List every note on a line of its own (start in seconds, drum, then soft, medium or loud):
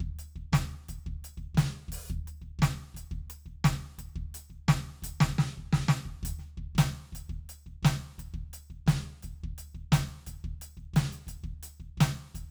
0.01 kick medium
0.19 percussion medium
0.36 kick soft
0.53 kick medium
0.53 snare loud
0.53 percussion medium
0.89 kick soft
0.89 percussion medium
1.07 kick medium
1.25 percussion medium
1.38 kick soft
1.55 kick medium
1.55 snare loud
1.55 percussion medium
1.89 kick soft
1.89 percussion loud
2.08 kick medium
2.08 percussion soft
2.28 percussion medium
2.42 kick soft
2.60 kick medium
2.60 snare loud
2.60 percussion medium
2.95 kick soft
2.95 percussion medium
3.12 kick medium
3.31 percussion loud
3.47 kick soft
3.65 kick medium
3.65 snare loud
3.65 percussion medium
3.99 kick soft
3.99 percussion medium
4.16 kick medium
4.35 percussion loud
4.51 kick soft
4.69 kick medium
4.69 snare loud
4.69 percussion medium
4.98 snare soft
5.03 kick soft
5.03 percussion loud
5.21 kick medium
5.21 snare loud
5.39 snare loud
5.58 kick soft
5.73 kick medium
5.73 snare loud
5.89 snare loud
6.06 kick soft
6.24 kick medium
6.24 percussion loud
6.40 snare soft
6.58 kick soft
6.76 kick medium
6.76 snare loud
6.76 percussion loud
7.13 kick soft
7.13 percussion medium
7.30 kick medium
7.50 percussion medium
7.67 kick soft
7.83 kick medium
7.83 snare loud
7.83 percussion medium
8.19 kick soft
8.19 percussion medium
8.34 kick medium
8.54 percussion medium
8.71 kick soft
8.87 kick medium
8.87 snare loud
8.87 percussion medium
9.23 kick soft
9.23 percussion medium
9.44 kick medium
9.59 percussion medium
9.75 kick soft
9.93 kick medium
9.93 snare loud
9.93 percussion loud
10.27 kick soft
10.27 percussion medium
10.45 kick medium
10.62 percussion medium
10.78 kick soft
10.94 kick soft
10.94 snare loud
10.94 percussion medium
11.13 percussion medium
11.28 kick soft
11.28 percussion medium
11.44 kick medium
11.63 percussion medium
11.80 kick soft
11.98 kick soft
11.98 snare loud
11.98 percussion loud
12.35 kick soft
12.35 percussion medium